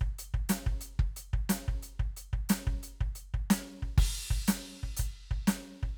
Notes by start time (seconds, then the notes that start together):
0.01 kick
0.19 closed hi-hat
0.34 kick
0.49 closed hi-hat, snare
0.66 kick
0.81 closed hi-hat
0.99 kick
1.16 closed hi-hat
1.33 kick
1.49 closed hi-hat, snare
1.68 kick
1.83 closed hi-hat
1.99 kick
2.17 closed hi-hat
2.33 kick
2.49 closed hi-hat, snare
2.67 kick
2.83 closed hi-hat
3.01 kick
3.15 closed hi-hat
3.34 kick
3.50 closed hi-hat, snare
3.82 kick
3.98 kick, crash
4.31 kick
4.48 closed hi-hat, snare
4.83 kick
4.97 closed hi-hat, kick
5.31 kick
5.47 closed hi-hat, snare
5.83 kick